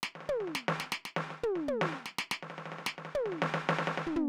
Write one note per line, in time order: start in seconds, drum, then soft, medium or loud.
0.03 snare loud
0.15 snare soft
0.20 snare soft
0.26 snare soft
0.26 high tom loud
0.40 snare soft
0.47 snare soft
0.55 snare loud
0.68 snare loud
0.80 snare medium
0.92 snare loud
1.05 snare medium
1.16 snare medium
1.30 snare soft
1.43 mid tom loud
1.55 snare soft
1.68 high tom loud
1.81 snare loud
1.92 snare soft
2.06 snare medium
2.18 snare loud
2.31 snare loud
2.43 snare soft
2.50 snare soft
2.58 snare soft
2.66 snare soft
2.72 snare soft
2.78 snare soft
2.86 snare loud
2.98 snare soft
3.05 snare soft
3.15 high tom loud
3.26 snare soft
3.32 snare soft
3.38 snare soft
3.42 snare loud
3.54 snare medium
3.69 snare loud
3.78 snare medium
3.87 snare medium
3.97 snare medium
4.06 floor tom medium
4.15 floor tom loud